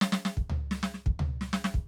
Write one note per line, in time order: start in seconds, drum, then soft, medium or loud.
0.01 snare loud
0.12 snare loud
0.25 snare medium
0.37 kick medium
0.50 floor tom loud
0.71 snare loud
0.83 snare medium
0.94 snare medium
1.06 kick loud
1.19 floor tom loud
1.19 high tom loud
1.41 snare medium
1.53 snare loud
1.64 snare loud
1.74 kick medium